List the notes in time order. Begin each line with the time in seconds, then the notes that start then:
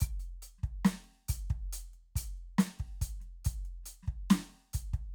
0.01 open hi-hat, kick, hi-hat pedal
0.20 closed hi-hat
0.43 closed hi-hat
0.59 snare
0.64 kick, closed hi-hat
0.85 closed hi-hat, snare
1.04 closed hi-hat
1.29 closed hi-hat, kick
1.50 kick, closed hi-hat
1.73 closed hi-hat
1.94 closed hi-hat
2.16 closed hi-hat, kick
2.37 closed hi-hat
2.59 closed hi-hat, snare
2.79 kick, closed hi-hat
3.02 closed hi-hat, kick
3.21 snare, closed hi-hat
3.45 closed hi-hat, kick
3.66 closed hi-hat
3.84 closed hi-hat, snare
4.03 snare
4.07 kick, closed hi-hat
4.30 closed hi-hat, snare
4.36 snare
4.74 closed hi-hat, kick
4.94 kick, closed hi-hat